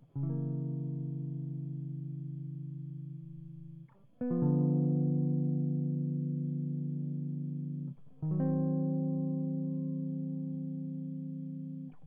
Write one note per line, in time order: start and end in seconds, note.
0.17 3.84 C#3
0.24 3.87 E3
0.30 2.42 A#3
4.21 7.93 B3
4.31 7.95 F3
4.43 7.89 D3
8.23 11.92 D#3
8.31 11.91 F#3
8.40 11.94 C4